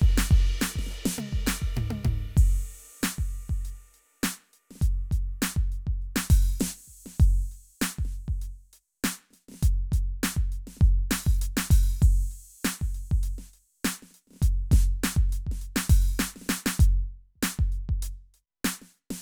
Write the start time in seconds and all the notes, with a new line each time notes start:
0.01 kick, hi-hat pedal, ride
0.18 snare
0.30 kick, hi-hat pedal, ride
0.59 snare, hi-hat pedal, ride
0.76 kick, snare
0.86 snare, ride
1.05 snare
1.16 hi-hat pedal, mid tom
1.33 kick
1.47 snare, hi-hat pedal, ride bell
1.62 kick
1.73 floor tom, hi-hat pedal
1.90 mid tom
2.05 kick, floor tom, hi-hat pedal
2.33 kick, hi-hat pedal
2.37 kick, crash
3.01 open hi-hat, kick, snare
3.06 hi-hat pedal
3.18 kick
3.35 closed hi-hat
3.50 kick
3.65 closed hi-hat
3.94 closed hi-hat
4.23 closed hi-hat, snare
4.53 closed hi-hat
4.71 snare
4.75 snare
4.82 closed hi-hat, kick
5.11 closed hi-hat, kick
5.42 closed hi-hat, snare
5.56 kick
5.72 closed hi-hat
5.87 kick
6.02 closed hi-hat
6.16 snare
6.30 open hi-hat, kick
6.60 snare, hi-hat pedal, crash
6.88 kick, closed hi-hat
7.06 snare
7.20 closed hi-hat, kick
7.51 closed hi-hat
7.82 closed hi-hat, snare
7.99 kick
8.05 snare
8.12 closed hi-hat
8.28 kick
8.42 closed hi-hat
8.73 closed hi-hat
9.04 closed hi-hat, snare
9.30 snare
9.33 closed hi-hat, snare
9.48 snare
9.52 snare
9.54 snare
9.63 closed hi-hat, kick
9.92 closed hi-hat, kick
10.23 closed hi-hat, snare
10.37 kick
10.52 closed hi-hat
10.67 snare
10.77 snare
10.81 kick, snare
11.11 open hi-hat, snare
11.27 kick
11.36 hi-hat pedal
11.42 closed hi-hat
11.57 snare
11.71 open hi-hat, kick
12.02 kick, hi-hat pedal, crash
12.31 closed hi-hat
12.65 closed hi-hat, snare
12.81 kick
12.95 closed hi-hat
13.11 kick
13.23 closed hi-hat
13.38 snare
13.53 closed hi-hat
13.85 closed hi-hat, snare
14.02 snare
14.11 closed hi-hat, snare
14.27 snare
14.31 snare
14.33 snare
14.36 snare
14.42 closed hi-hat, kick
14.71 closed hi-hat, kick, snare
15.04 closed hi-hat, snare
15.17 kick
15.29 closed hi-hat, snare
15.47 kick
15.51 snare
15.61 closed hi-hat
15.76 snare
15.90 open hi-hat, kick
16.19 snare, hi-hat pedal
16.36 snare
16.41 snare
16.46 snare
16.49 snare
16.66 snare
16.80 open hi-hat, kick
17.36 kick
17.43 open hi-hat, snare, hi-hat pedal
17.59 kick
17.72 closed hi-hat
17.89 kick
18.02 closed hi-hat
18.34 closed hi-hat
18.64 closed hi-hat, snare
18.82 snare
18.94 closed hi-hat
19.11 snare